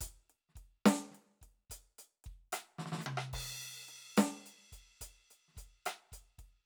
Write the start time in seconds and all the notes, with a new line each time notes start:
0.01 closed hi-hat, kick
0.06 kick
0.30 closed hi-hat
0.49 snare
0.54 kick, snare, closed hi-hat
0.86 closed hi-hat, snare
1.11 snare, closed hi-hat
1.42 kick, closed hi-hat
1.70 closed hi-hat, kick
1.99 closed hi-hat
2.24 kick, closed hi-hat
2.53 closed hi-hat, cross-stick
2.79 snare
2.86 snare
2.92 snare
2.98 snare, hi-hat pedal
3.07 high tom
3.18 cross-stick
3.34 kick, crash
3.39 kick
3.62 closed hi-hat
3.89 closed hi-hat
4.17 closed hi-hat, snare
4.46 closed hi-hat
4.73 closed hi-hat, kick
5.01 closed hi-hat, kick
5.31 closed hi-hat
5.48 snare
5.55 closed hi-hat, kick, snare
5.86 closed hi-hat, cross-stick
6.12 closed hi-hat, kick, snare
6.39 kick, closed hi-hat